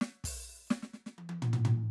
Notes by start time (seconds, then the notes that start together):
0.01 snare
0.24 kick, percussion
0.67 snare, percussion
0.83 snare
0.93 snare
1.06 snare
1.18 high tom
1.29 high tom
1.42 floor tom
1.53 floor tom
1.65 floor tom